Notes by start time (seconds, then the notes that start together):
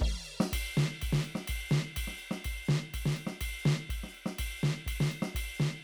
0.01 kick, crash
0.13 kick
0.24 hi-hat pedal
0.40 snare
0.53 kick, ride bell
0.59 kick
0.73 hi-hat pedal
0.77 snare
1.02 kick, ride bell
1.08 kick
1.13 snare
1.21 hi-hat pedal, ride
1.35 snare
1.48 kick, ride bell
1.69 snare, hi-hat pedal
1.96 kick, ride bell
2.08 snare
2.17 hi-hat pedal, ride
2.31 snare
2.45 kick, ride bell
2.51 kick
2.65 hi-hat pedal
2.69 snare
2.94 kick, ride bell
2.99 kick
3.06 snare
3.12 hi-hat pedal
3.16 ride
3.27 snare
3.41 kick, ride bell
3.47 kick
3.59 hi-hat pedal
3.66 snare
3.90 kick, ride bell
3.95 kick
4.04 snare
4.09 hi-hat pedal
4.15 ride
4.26 snare
4.39 kick, ride bell
4.58 hi-hat pedal
4.63 snare
4.87 kick, ride bell
4.92 kick
5.01 snare
5.06 hi-hat pedal
5.11 ride
5.22 snare
5.35 kick, ride bell
5.41 kick
5.55 hi-hat pedal
5.60 snare